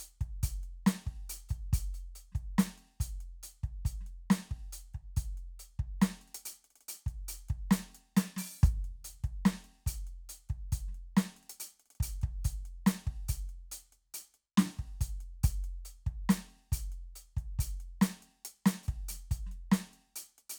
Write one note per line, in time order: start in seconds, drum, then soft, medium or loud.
0.01 closed hi-hat medium
0.22 kick soft
0.22 closed hi-hat soft
0.44 closed hi-hat loud
0.44 kick medium
0.64 closed hi-hat soft
0.87 closed hi-hat loud
0.87 snare loud
1.07 kick medium
1.07 closed hi-hat soft
1.30 closed hi-hat loud
1.50 closed hi-hat soft
1.50 kick medium
1.74 closed hi-hat loud
1.74 kick medium
1.95 closed hi-hat soft
2.16 closed hi-hat medium
2.33 kick medium
2.33 snare soft
2.33 closed hi-hat soft
2.59 closed hi-hat loud
2.59 snare loud
2.79 closed hi-hat soft
3.01 closed hi-hat loud
3.01 kick medium
3.21 closed hi-hat soft
3.44 closed hi-hat loud
3.64 kick soft
3.64 closed hi-hat soft
3.86 closed hi-hat medium
3.86 kick medium
4.02 snare soft
4.07 closed hi-hat soft
4.31 closed hi-hat loud
4.31 snare loud
4.52 kick medium
4.52 closed hi-hat soft
4.74 closed hi-hat loud
4.95 kick soft
4.95 closed hi-hat soft
5.18 closed hi-hat medium
5.18 kick medium
5.38 closed hi-hat soft
5.60 closed hi-hat medium
5.80 kick medium
5.80 closed hi-hat soft
6.03 closed hi-hat loud
6.03 snare loud
6.22 closed hi-hat soft
6.29 closed hi-hat soft
6.36 closed hi-hat loud
6.46 closed hi-hat loud
6.65 closed hi-hat soft
6.71 closed hi-hat soft
6.77 closed hi-hat soft
6.82 closed hi-hat soft
6.89 closed hi-hat loud
7.07 kick soft
7.07 closed hi-hat soft
7.29 closed hi-hat loud
7.50 kick medium
7.50 closed hi-hat soft
7.72 closed hi-hat loud
7.72 snare loud
7.96 closed hi-hat medium
8.18 closed hi-hat loud
8.18 snare loud
8.37 open hi-hat loud
8.37 snare medium
8.64 kick loud
8.64 closed hi-hat soft
8.64 hi-hat pedal medium
8.85 closed hi-hat soft
9.05 closed hi-hat loud
9.25 kick medium
9.25 closed hi-hat soft
9.46 closed hi-hat medium
9.46 snare loud
9.65 closed hi-hat soft
9.87 closed hi-hat loud
9.87 kick medium
10.08 closed hi-hat soft
10.30 closed hi-hat loud
10.50 kick soft
10.50 closed hi-hat soft
10.73 closed hi-hat loud
10.73 kick medium
10.89 snare soft
10.95 closed hi-hat soft
11.18 closed hi-hat loud
11.18 snare loud
11.37 closed hi-hat soft
11.44 closed hi-hat soft
11.51 closed hi-hat loud
11.61 closed hi-hat loud
11.74 closed hi-hat soft
11.81 closed hi-hat soft
11.87 closed hi-hat soft
11.91 closed hi-hat soft
11.96 closed hi-hat soft
12.01 closed hi-hat loud
12.01 kick medium
12.22 kick medium
12.22 closed hi-hat soft
12.46 closed hi-hat loud
12.46 kick medium
12.66 closed hi-hat soft
12.87 closed hi-hat loud
12.87 snare loud
13.08 kick medium
13.08 closed hi-hat soft
13.30 closed hi-hat loud
13.30 kick medium
13.50 closed hi-hat soft
13.72 closed hi-hat loud
13.93 closed hi-hat soft
14.15 closed hi-hat loud
14.35 closed hi-hat soft
14.58 closed hi-hat loud
14.58 snare loud
14.79 kick soft
14.79 closed hi-hat soft
15.02 closed hi-hat loud
15.02 kick medium
15.21 closed hi-hat soft
15.44 closed hi-hat loud
15.44 kick medium
15.65 closed hi-hat soft
15.86 closed hi-hat medium
16.07 kick medium
16.07 closed hi-hat soft
16.30 closed hi-hat loud
16.30 snare loud
16.51 closed hi-hat soft
16.73 closed hi-hat loud
16.73 kick medium
16.93 closed hi-hat soft
17.17 closed hi-hat medium
17.38 kick medium
17.38 closed hi-hat soft
17.60 closed hi-hat loud
17.60 kick medium
17.81 closed hi-hat soft
18.02 closed hi-hat loud
18.02 snare loud
18.23 closed hi-hat soft
18.46 closed hi-hat loud
18.67 open hi-hat loud
18.67 snare loud
18.84 hi-hat pedal medium
18.89 kick medium
18.89 closed hi-hat soft
19.10 closed hi-hat loud
19.10 snare soft
19.32 closed hi-hat medium
19.32 kick medium
19.47 snare soft
19.52 closed hi-hat soft
19.73 closed hi-hat loud
19.73 snare loud
19.94 closed hi-hat soft
20.17 closed hi-hat loud
20.30 closed hi-hat soft
20.39 closed hi-hat soft
20.51 closed hi-hat loud